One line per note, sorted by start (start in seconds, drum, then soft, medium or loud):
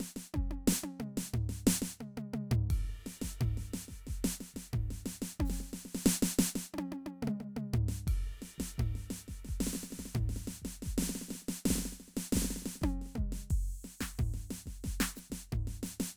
0.01 snare medium
0.17 snare soft
0.35 kick soft
0.35 high tom medium
0.46 kick soft
0.51 high tom medium
0.68 snare loud
0.73 snare medium
0.84 high tom medium
1.00 mid tom medium
1.18 snare medium
1.34 floor tom loud
1.50 snare soft
1.67 snare loud
1.82 snare medium
2.01 mid tom medium
2.18 mid tom medium
2.34 mid tom loud
2.52 floor tom loud
2.71 kick medium
2.71 ride loud
2.75 hi-hat pedal soft
3.07 snare soft
3.22 kick soft
3.22 snare medium
3.41 kick soft
3.41 floor tom loud
3.58 snare soft
3.74 snare medium
3.74 hi-hat pedal soft
3.89 kick soft
3.89 snare soft
4.07 kick soft
4.07 snare soft
4.25 snare medium
4.39 snare soft
4.39 hi-hat pedal soft
4.55 kick soft
4.55 snare soft
4.74 kick soft
4.74 floor tom medium
4.91 snare soft
5.06 snare medium
5.06 hi-hat pedal soft
5.22 snare medium
5.40 kick soft
5.40 high tom loud
5.46 kick soft
5.46 hi-hat pedal medium
5.50 snare medium
5.61 snare soft
5.74 snare soft
5.86 snare soft
5.95 snare medium
6.06 snare loud
6.23 snare loud
6.39 snare loud
6.56 snare medium
6.74 high tom medium
6.79 high tom loud
6.93 high tom medium
7.07 high tom medium
7.23 mid tom loud
7.28 mid tom loud
7.41 mid tom medium
7.57 mid tom loud
7.74 floor tom loud
7.89 snare soft
8.08 kick medium
8.08 ride loud
8.42 snare soft
8.59 kick soft
8.59 snare medium
8.79 kick soft
8.79 floor tom medium
8.96 snare soft
9.11 snare medium
9.15 hi-hat pedal soft
9.29 kick soft
9.29 snare soft
9.45 snare soft
9.49 kick soft
9.61 snare medium
9.67 snare medium
9.74 snare soft
9.76 snare medium
9.82 snare soft
9.82 hi-hat pedal soft
9.91 snare soft
9.93 snare soft
9.98 kick soft
9.98 snare soft
10.06 snare soft
10.15 kick soft
10.15 floor tom loud
10.30 snare soft
10.37 snare soft
10.48 snare medium
10.48 hi-hat pedal soft
10.62 kick soft
10.62 snare medium
10.83 kick soft
10.83 snare soft
10.92 kick soft
10.98 snare medium
11.03 snare medium
11.08 snare soft
11.10 snare medium
11.16 snare soft
11.22 snare soft
11.29 snare soft
11.31 snare medium
11.36 snare soft
11.42 snare soft
11.49 snare medium
11.66 kick soft
11.66 snare medium
11.71 snare medium
11.76 snare medium
11.79 snare medium
11.82 snare soft
11.86 snare soft
11.93 snare soft
12.00 snare soft
12.08 snare soft
12.14 snare soft
12.17 snare medium
12.33 kick soft
12.33 snare medium
12.37 snare medium
12.43 snare medium
12.45 snare medium
12.51 snare soft
12.57 snare soft
12.63 snare soft
12.66 snare medium
12.76 snare soft
12.82 kick soft
12.82 snare soft
12.82 high tom loud
12.87 hi-hat pedal soft
13.02 snare soft
13.06 snare soft
13.16 kick soft
13.16 mid tom medium
13.27 kick soft
13.33 snare soft
13.51 kick medium
13.51 crash medium
13.83 snare soft
13.83 hi-hat pedal soft
14.01 kick soft
14.01 snare medium
14.19 kick soft
14.19 floor tom medium
14.34 snare soft
14.51 snare medium
14.51 hi-hat pedal soft
14.67 kick soft
14.67 snare soft
14.85 kick soft
14.85 snare soft
15.01 snare medium
15.16 snare soft
15.16 hi-hat pedal medium
15.31 kick soft
15.31 snare medium
15.53 kick soft
15.53 floor tom medium
15.68 snare soft
15.84 snare medium
15.84 hi-hat pedal medium
16.01 snare medium